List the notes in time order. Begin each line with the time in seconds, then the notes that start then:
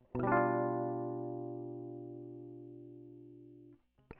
0.16 B2
0.22 A2 G3
0.27 D4 E4
0.32 F4
0.37 A4